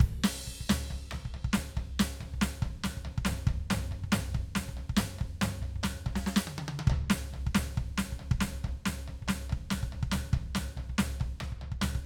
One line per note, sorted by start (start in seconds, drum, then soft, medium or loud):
0.01 kick loud
0.01 ride medium
0.24 snare loud
0.24 crash loud
0.48 kick soft
0.61 kick soft
0.70 snare loud
0.70 floor tom loud
0.91 kick soft
0.91 floor tom medium
1.12 cross-stick medium
1.12 floor tom loud
1.26 kick medium
1.26 snare soft
1.35 floor tom medium
1.45 kick medium
1.54 snare loud
1.54 floor tom loud
1.75 kick medium
1.75 snare soft
1.75 floor tom medium
2.00 snare loud
2.00 floor tom loud
2.19 kick soft
2.19 snare soft
2.19 floor tom medium
2.34 kick soft
2.42 snare loud
2.42 floor tom loud
2.63 kick medium
2.63 floor tom medium
2.84 snare medium
2.84 floor tom loud
2.98 kick soft
2.98 snare soft
3.06 floor tom medium
3.18 kick medium
3.26 snare loud
3.26 floor tom loud
3.47 kick loud
3.47 floor tom medium
3.71 snare loud
3.71 floor tom loud
3.92 kick soft
3.92 floor tom medium
4.04 kick soft
4.13 snare loud
4.13 floor tom loud
4.35 kick medium
4.35 floor tom medium
4.56 snare loud
4.56 floor tom medium
4.69 kick soft
4.69 snare soft
4.78 floor tom medium
4.90 kick medium
4.97 snare loud
4.97 floor tom loud
5.19 kick medium
5.19 floor tom medium
5.42 snare loud
5.42 floor tom loud
5.62 kick soft
5.62 floor tom medium
5.76 kick soft
5.84 snare loud
5.84 floor tom loud
5.99 snare soft
6.07 kick medium
6.07 floor tom medium
6.16 snare loud
6.27 snare loud
6.37 snare loud
6.48 high tom loud
6.59 high tom loud
6.69 high tom loud
6.80 high tom loud
6.88 kick loud
6.88 floor tom loud
7.11 snare loud
7.11 floor tom loud
7.18 snare soft
7.24 snare soft
7.34 kick soft
7.34 floor tom medium
7.47 kick medium
7.55 snare loud
7.55 floor tom loud
7.75 kick medium
7.75 snare soft
7.75 floor tom medium
7.98 snare loud
7.98 floor tom medium
8.13 kick soft
8.20 floor tom medium
8.32 kick loud
8.41 snare loud
8.41 floor tom loud
8.65 kick medium
8.65 floor tom medium
8.86 snare loud
8.86 floor tom loud
9.08 kick soft
9.08 floor tom medium
9.23 kick soft
9.29 snare loud
9.29 floor tom loud
9.50 kick medium
9.50 floor tom medium
9.71 snare loud
9.71 floor tom loud
9.83 kick medium
9.93 floor tom medium
10.03 kick medium
10.12 snare loud
10.12 floor tom loud
10.34 kick loud
10.34 floor tom medium
10.56 snare loud
10.56 floor tom loud
10.77 kick soft
10.77 floor tom medium
10.90 kick soft
10.99 snare loud
10.99 floor tom loud
11.21 kick medium
11.21 floor tom medium
11.41 cross-stick medium
11.41 floor tom loud
11.53 kick soft
11.62 floor tom medium
11.72 kick medium
11.82 snare loud
11.82 floor tom loud
11.96 kick medium